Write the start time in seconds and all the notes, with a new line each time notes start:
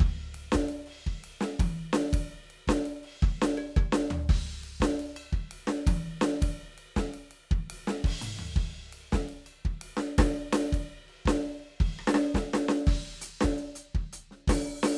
0.01 kick, ride
0.35 ride
0.53 kick, snare, hi-hat pedal
0.69 ride
0.87 ride
1.05 kick, ride
1.25 ride
1.42 snare
1.60 kick, high tom, ride
1.94 snare, ride
2.11 kick, hi-hat pedal, ride
2.51 ride
2.68 kick, snare
2.86 ride
3.04 ride
3.22 kick, ride
3.43 snare
3.58 percussion
3.77 kick, percussion
3.93 snare
4.11 floor tom
4.30 kick, crash
4.64 ride
4.81 kick, snare, hi-hat pedal
5.00 ride
5.17 ride bell
5.33 kick
5.52 ride
5.68 snare
5.87 kick, high tom, ride
6.22 snare, ride
6.41 kick, hi-hat pedal, ride
6.79 ride
6.97 kick, snare
7.15 ride
7.32 ride
7.49 kick, ride
7.71 ride
7.88 snare
8.05 kick, ride
8.22 mid tom
8.40 floor tom
8.57 kick, ride
8.93 ride
9.12 kick, snare, hi-hat pedal
9.30 ride
9.47 ride bell
9.66 kick
9.82 ride
9.98 snare
10.19 kick, snare, ride
10.53 snare, ride
10.73 kick, hi-hat pedal, ride
11.09 ride
11.26 kick, snare
11.45 ride
11.63 ride
11.80 kick, ride
12.00 cross-stick
12.08 snare
12.15 snare
12.35 kick, snare
12.54 snare
12.69 snare
12.87 kick, hi-hat pedal, crash
13.22 closed hi-hat
13.42 kick, snare
13.59 closed hi-hat
13.76 closed hi-hat
13.95 kick
14.14 closed hi-hat
14.32 snare
14.48 open hi-hat, kick, snare
14.84 open hi-hat, snare